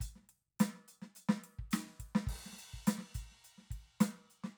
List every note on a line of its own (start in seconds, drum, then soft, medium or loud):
0.01 closed hi-hat medium
0.01 kick soft
0.16 snare soft
0.23 snare soft
0.30 closed hi-hat soft
0.60 closed hi-hat medium
0.60 snare loud
0.74 snare soft
0.88 closed hi-hat soft
1.02 snare soft
1.16 closed hi-hat soft
1.16 hi-hat pedal soft
1.29 snare medium
1.44 closed hi-hat soft
1.59 kick soft
1.71 closed hi-hat medium
1.71 snare medium
1.71 hi-hat pedal medium
1.87 snare soft
2.00 kick soft
2.00 closed hi-hat soft
2.15 snare medium
2.27 kick soft
2.27 crash medium
2.33 kick soft
2.36 kick soft
2.46 snare soft
2.53 snare soft
2.59 closed hi-hat medium
2.74 kick soft
2.87 closed hi-hat loud
2.87 snare medium
2.99 snare soft
3.15 closed hi-hat medium
3.15 kick soft
3.23 kick soft
3.32 snare soft
3.45 closed hi-hat soft
3.58 snare soft
3.64 snare soft
3.71 kick soft
3.71 closed hi-hat soft
4.01 closed hi-hat loud
4.01 snare loud
4.30 closed hi-hat soft
4.44 snare soft